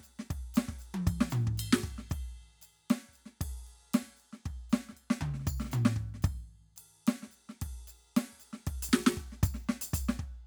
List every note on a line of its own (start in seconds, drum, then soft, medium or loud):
0.01 kick soft
0.01 percussion soft
0.05 ride soft
0.20 snare medium
0.31 kick medium
0.31 ride medium
0.55 snare loud
0.55 ride medium
0.55 percussion medium
0.69 kick medium
0.69 snare soft
0.80 ride bell soft
0.80 percussion soft
0.95 high tom loud
1.08 kick loud
1.08 ride bell medium
1.22 snare loud
1.31 floor tom loud
1.31 percussion medium
1.48 kick medium
1.59 ride bell loud
1.59 percussion medium
1.74 snare loud
1.84 kick medium
1.99 snare soft
2.11 kick medium
2.11 ride medium
2.11 percussion soft
2.62 ride soft
2.62 percussion soft
2.91 snare loud
2.91 ride medium
3.08 kick soft
3.08 snare soft
3.14 ride soft
3.14 percussion soft
3.27 snare soft
3.42 kick medium
3.42 ride loud
3.68 ride soft
3.95 snare loud
3.95 ride bell medium
4.03 kick soft
4.17 ride soft
4.17 percussion soft
4.34 snare soft
4.47 kick medium
4.47 ride bell soft
4.71 snare loud
4.71 ride bell soft
4.71 percussion soft
4.90 kick soft
4.90 snare soft
4.98 ride bell soft
5.11 snare loud
5.22 kick medium
5.22 mid tom loud
5.35 snare soft
5.41 snare soft
5.44 kick loud
5.44 snare soft
5.44 percussion medium
5.61 snare medium
5.66 snare medium
5.71 kick soft
5.71 snare soft
5.71 floor tom loud
5.71 percussion medium
5.86 snare loud
5.97 kick medium
6.15 snare soft
6.23 kick loud
6.23 ride bell soft
6.23 percussion medium
6.77 ride medium
6.77 percussion soft
7.08 snare loud
7.08 ride medium
7.23 snare soft
7.28 kick soft
7.32 ride soft
7.32 percussion soft
7.50 snare soft
7.62 kick medium
7.62 ride medium
7.88 percussion medium
8.17 snare loud
8.17 ride loud
8.33 kick soft
8.41 percussion soft
8.54 snare medium
8.68 kick medium
8.68 ride medium
8.83 percussion loud
8.90 kick soft
8.90 percussion medium
8.94 snare loud
9.07 snare loud
9.18 kick medium
9.33 snare soft
9.44 kick loud
9.44 percussion loud
9.55 snare soft
9.70 snare loud
9.82 percussion loud
9.94 kick loud
9.94 percussion loud
10.10 snare loud
10.20 kick medium